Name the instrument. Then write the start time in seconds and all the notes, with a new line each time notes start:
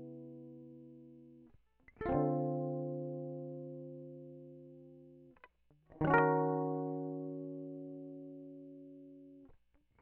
electric guitar
2.02 A4
2.06 C4 F4
2.14 D3 F#3
6.02 D#3 F#3
6.08 C#4 F#4
6.14 A#4
6.19 D5